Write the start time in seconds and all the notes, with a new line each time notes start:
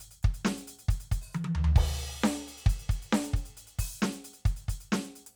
0.01 closed hi-hat
0.12 closed hi-hat
0.24 kick, closed hi-hat
0.35 closed hi-hat
0.46 snare
0.58 closed hi-hat
0.68 closed hi-hat
0.80 closed hi-hat
0.89 closed hi-hat, kick
1.01 closed hi-hat
1.12 closed hi-hat, kick
1.22 open hi-hat
1.35 hi-hat pedal, high tom
1.45 high tom
1.56 floor tom
1.65 floor tom
1.77 kick, crash
2.00 closed hi-hat
2.14 closed hi-hat
2.24 snare
2.37 closed hi-hat
2.49 closed hi-hat
2.58 closed hi-hat
2.67 closed hi-hat, kick
2.80 closed hi-hat
2.90 closed hi-hat, kick
3.03 closed hi-hat
3.13 snare
3.25 closed hi-hat
3.34 closed hi-hat, kick
3.46 closed hi-hat
3.58 closed hi-hat
3.68 closed hi-hat
3.80 open hi-hat, kick
3.91 open hi-hat
4.00 snare, hi-hat pedal
4.13 closed hi-hat
4.25 closed hi-hat
4.34 closed hi-hat
4.46 closed hi-hat, kick
4.57 closed hi-hat
4.69 closed hi-hat, kick
4.81 closed hi-hat
4.93 snare
5.06 closed hi-hat
5.16 closed hi-hat
5.27 closed hi-hat